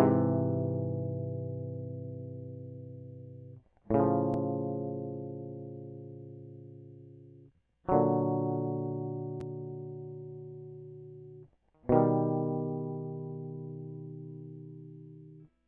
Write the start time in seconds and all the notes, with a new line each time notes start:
0.00 G#2
3.92 A2 C#3
4.00 F3
4.07 A3
7.89 D3 F#3
7.96 A#2
11.91 B2 D#3
11.96 G3